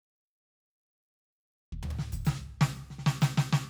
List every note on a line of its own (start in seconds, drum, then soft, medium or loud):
1.72 kick soft
1.83 floor tom loud
1.90 high tom medium
1.99 snare medium
2.12 kick medium
2.12 percussion medium
2.25 snare loud
2.25 percussion medium
2.61 snare loud
2.74 snare soft
2.74 percussion soft
2.90 snare soft
2.98 snare soft
3.06 snare loud
3.21 snare loud
3.21 percussion medium
3.37 snare loud
3.53 snare loud